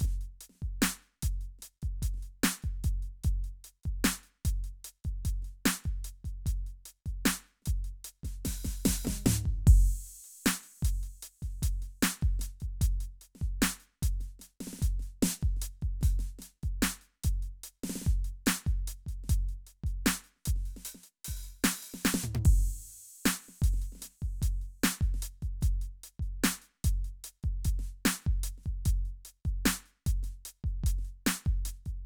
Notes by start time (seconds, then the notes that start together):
0.01 closed hi-hat, kick
0.05 snare
0.21 closed hi-hat
0.41 closed hi-hat
0.50 snare
0.55 snare
0.62 kick, closed hi-hat
0.82 closed hi-hat, snare
1.03 closed hi-hat
1.23 closed hi-hat, kick
1.41 closed hi-hat
1.59 closed hi-hat, snare
1.82 kick, closed hi-hat
2.03 closed hi-hat, kick
2.14 snare
2.18 snare
2.23 closed hi-hat
2.44 closed hi-hat, snare
2.63 kick, closed hi-hat
2.84 closed hi-hat, kick
3.03 closed hi-hat
3.24 closed hi-hat, kick
3.45 closed hi-hat
3.65 closed hi-hat
3.84 kick, closed hi-hat
4.05 closed hi-hat, snare
4.24 closed hi-hat
4.46 closed hi-hat, kick
4.64 closed hi-hat
4.85 closed hi-hat
5.05 kick, closed hi-hat
5.25 closed hi-hat, kick
5.43 snare, closed hi-hat
5.66 closed hi-hat, snare
5.84 kick, closed hi-hat
6.05 closed hi-hat
6.25 kick, closed hi-hat
6.47 closed hi-hat, kick
6.67 closed hi-hat
6.86 closed hi-hat
7.06 kick, closed hi-hat
7.26 closed hi-hat, snare
7.46 closed hi-hat
7.63 closed hi-hat, snare
7.68 kick
7.85 closed hi-hat
8.05 closed hi-hat
8.24 closed hi-hat, kick, snare
8.45 open hi-hat, kick, snare
8.65 kick, snare, open hi-hat
8.86 open hi-hat, kick, snare
9.05 kick, snare, mid tom
9.26 snare, floor tom
9.46 kick
9.68 kick, crash
10.07 closed hi-hat
10.25 closed hi-hat
10.46 closed hi-hat, snare
10.64 closed hi-hat
10.83 closed hi-hat, kick
11.03 closed hi-hat
11.23 closed hi-hat
11.43 kick, snare, closed hi-hat
11.63 closed hi-hat, kick
11.82 snare, closed hi-hat
12.03 closed hi-hat, snare
12.22 kick, closed hi-hat
12.40 closed hi-hat, snare
12.61 kick, closed hi-hat
12.82 closed hi-hat, kick
13.01 closed hi-hat
13.22 closed hi-hat
13.36 snare
13.42 kick
13.62 closed hi-hat, snare
13.80 closed hi-hat
14.03 closed hi-hat, kick
14.21 snare, closed hi-hat
14.40 closed hi-hat, snare
14.61 snare, closed hi-hat
14.68 snare
14.73 snare
14.79 kick, snare, closed hi-hat
15.00 snare, closed hi-hat
15.23 closed hi-hat, snare
15.42 kick, closed hi-hat
15.57 snare
15.62 closed hi-hat
15.82 kick, closed hi-hat
16.02 open hi-hat, kick, snare
16.20 closed hi-hat, snare
16.39 closed hi-hat, snare
16.63 kick, closed hi-hat
16.83 closed hi-hat, snare
17.02 closed hi-hat
17.24 closed hi-hat, kick
17.43 closed hi-hat
17.64 closed hi-hat
17.84 snare, closed hi-hat
17.90 snare
17.96 snare
18.02 snare, closed hi-hat
18.07 kick
18.25 closed hi-hat
18.47 closed hi-hat, snare
18.67 kick, closed hi-hat
18.88 closed hi-hat
19.07 kick, closed hi-hat
19.24 snare
19.30 closed hi-hat, kick
19.49 closed hi-hat
19.67 closed hi-hat
19.84 kick, closed hi-hat
20.07 closed hi-hat, snare
20.25 closed hi-hat
20.37 snare
20.46 closed hi-hat, kick
20.56 snare
20.66 open hi-hat
20.77 snare
20.85 open hi-hat, hi-hat pedal
20.95 snare
21.04 closed hi-hat
21.25 open hi-hat, kick
21.45 open hi-hat
21.64 open hi-hat, snare
21.83 open hi-hat
21.94 snare
22.03 snare, hi-hat pedal
22.15 snare
22.24 floor tom
22.35 floor tom
22.46 kick, crash
22.90 open hi-hat
23.26 closed hi-hat, snare, hi-hat pedal
23.44 closed hi-hat
23.49 snare
23.62 closed hi-hat, kick
23.74 snare
23.79 snare, closed hi-hat
23.93 snare
23.96 snare
24.00 snare
24.02 closed hi-hat, snare
24.05 snare
24.22 kick, closed hi-hat
24.42 closed hi-hat, kick
24.62 closed hi-hat
24.84 closed hi-hat, snare
25.02 kick, open hi-hat
25.15 snare
25.23 closed hi-hat
25.43 kick, closed hi-hat
25.62 closed hi-hat, kick, hi-hat pedal
25.82 closed hi-hat
26.04 closed hi-hat
26.20 kick, closed hi-hat
26.44 closed hi-hat, snare
26.62 closed hi-hat
26.85 closed hi-hat, kick
27.05 closed hi-hat
27.25 closed hi-hat
27.43 kick, closed hi-hat
27.65 closed hi-hat, kick
27.80 snare
27.84 closed hi-hat
28.06 closed hi-hat, snare
28.22 closed hi-hat
28.27 kick
28.44 closed hi-hat
28.58 snare
28.64 kick, closed hi-hat
28.86 closed hi-hat, kick
29.06 closed hi-hat
29.26 closed hi-hat
29.46 kick, closed hi-hat
29.66 closed hi-hat, snare
29.86 closed hi-hat
30.07 closed hi-hat, kick
30.23 snare, closed hi-hat
30.46 closed hi-hat
30.65 kick, closed hi-hat
30.84 closed hi-hat, kick
30.99 snare
31.05 closed hi-hat
31.27 closed hi-hat, snare
31.46 kick, closed hi-hat
31.66 closed hi-hat, snare
31.86 kick, closed hi-hat